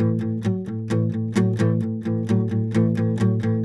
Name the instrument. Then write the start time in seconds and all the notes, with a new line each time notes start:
acoustic guitar
0.00 A2 E3
0.20 A2 E3 A3
0.47 F#3
0.66 A2 F#3
0.91 A2 E3 A3
1.15 A2
1.37 A2 F#3 A3
1.60 A2 E3 A3
1.82 A2 E3
2.07 A2 E3
2.30 A2 F#3 G3
2.51 A2 F#3
2.76 A2 E3 A3
2.98 A2 E3
3.16 A2 A#3
3.23 F#3
3.45 A2 E3